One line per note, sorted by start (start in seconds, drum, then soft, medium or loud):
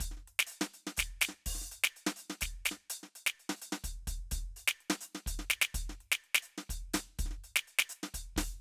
0.00 closed hi-hat medium
0.00 kick soft
0.09 kick soft
0.09 snare soft
0.17 snare soft
0.27 closed hi-hat soft
0.39 snare loud
0.46 hi-hat pedal medium
0.51 closed hi-hat soft
0.61 snare medium
0.73 closed hi-hat soft
0.86 snare medium
0.96 closed hi-hat medium
0.96 kick soft
0.96 snare medium
0.96 hi-hat pedal medium
1.21 closed hi-hat medium
1.21 snare medium
1.28 snare soft
1.46 open hi-hat medium
1.46 kick soft
1.54 snare soft
1.61 snare soft
1.71 closed hi-hat soft
1.83 snare loud
1.96 closed hi-hat soft
2.06 snare medium
2.16 closed hi-hat soft
2.16 hi-hat pedal medium
2.29 snare medium
2.41 closed hi-hat medium
2.41 kick soft
2.41 snare medium
2.65 closed hi-hat medium
2.65 snare medium
2.71 snare soft
2.90 closed hi-hat medium
3.03 snare soft
3.15 closed hi-hat soft
3.26 snare medium
3.39 closed hi-hat soft
3.49 snare medium
3.56 hi-hat pedal soft
3.61 closed hi-hat soft
3.72 snare medium
3.83 closed hi-hat medium
3.83 kick soft
4.07 closed hi-hat medium
4.07 kick soft
4.15 kick soft
4.31 closed hi-hat medium
4.31 kick soft
4.31 snare soft
4.38 snare soft
4.56 open hi-hat soft
4.56 hi-hat pedal soft
4.67 snare loud
4.80 closed hi-hat soft
4.90 snare medium
5.00 closed hi-hat soft
5.00 hi-hat pedal medium
5.14 snare soft
5.26 closed hi-hat medium
5.26 kick soft
5.34 kick soft
5.39 snare soft
5.50 snare medium
5.61 snare loud
5.74 closed hi-hat medium
5.74 kick soft
5.89 snare soft
6.00 closed hi-hat soft
6.11 snare medium
6.24 closed hi-hat soft
6.34 snare loud
6.42 hi-hat pedal soft
6.46 closed hi-hat soft
6.57 snare soft
6.69 closed hi-hat medium
6.69 kick soft
6.93 closed hi-hat medium
6.93 kick soft
6.93 snare medium
7.18 closed hi-hat medium
7.18 kick soft
7.25 kick soft
7.25 snare soft
7.28 kick soft
7.28 snare soft
7.43 closed hi-hat soft
7.55 snare medium
7.67 closed hi-hat soft
7.78 snare loud
7.89 hi-hat pedal medium
8.03 snare medium
8.14 closed hi-hat medium
8.14 kick soft
8.36 open hi-hat medium
8.36 kick soft
8.36 snare medium